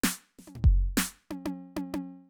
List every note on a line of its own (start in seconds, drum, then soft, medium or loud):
0.03 snare loud
0.39 snare soft
0.47 high tom medium
0.55 floor tom medium
0.64 kick loud
0.97 snare loud
1.31 high tom loud
1.46 high tom loud
1.76 high tom loud
1.94 high tom loud